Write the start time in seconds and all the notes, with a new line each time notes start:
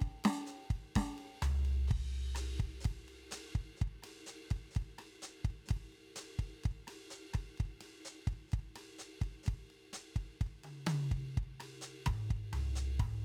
0.01 kick, ride
0.07 kick
0.24 snare, ride
0.47 hi-hat pedal, ride
0.70 kick, ride
0.76 kick
0.96 kick, snare, ride
1.02 kick
1.18 ride
1.42 floor tom, hi-hat pedal, ride
1.65 ride
1.88 kick, crash
1.97 kick
2.35 cross-stick, snare, hi-hat pedal, ride
2.60 kick, ride
2.65 kick
2.81 snare, hi-hat pedal
2.85 kick, ride
2.91 kick
3.08 ride
3.31 snare, hi-hat pedal, ride
3.55 kick, ride
3.61 kick
3.77 hi-hat pedal, ride
3.82 kick, mid tom
3.87 kick
4.03 cross-stick, ride
4.27 hi-hat pedal, ride
4.51 kick, ride
4.56 kick
4.71 hi-hat pedal
4.75 kick, ride
4.82 kick
4.99 cross-stick, ride
5.22 hi-hat pedal, ride
5.45 kick, ride
5.50 kick
5.66 snare, hi-hat pedal, ride
5.71 kick
5.76 kick
5.93 ride
6.16 snare, hi-hat pedal, ride
6.39 kick, ride
6.64 kick, ride
6.71 kick
6.88 cross-stick, ride
7.11 hi-hat pedal, ride
7.33 kick, cross-stick, snare, ride
7.58 kick, ride
7.65 kick
7.81 snare, ride
8.05 hi-hat pedal, ride
8.27 kick, ride
8.33 kick
8.48 hi-hat pedal
8.52 kick, ride
8.59 kick
8.76 cross-stick, snare, ride
8.99 hi-hat pedal, ride
9.22 kick, ride
9.44 snare, hi-hat pedal, ride
9.48 kick
9.53 kick
9.70 ride
9.93 snare, hi-hat pedal, ride
10.16 kick, ride
10.41 kick, ride
10.46 kick
10.64 high tom, ride
10.87 hi-hat pedal, high tom, ride
11.12 kick
11.17 kick
11.25 snare
11.28 snare
11.38 kick
11.43 kick
11.60 cross-stick, snare, ride
11.82 hi-hat pedal, ride
12.06 kick, mid tom, ride
12.13 kick
12.31 kick, ride
12.36 kick
12.53 floor tom, ride
12.76 hi-hat pedal, ride
13.00 kick, mid tom, ride
13.06 kick
13.20 hi-hat pedal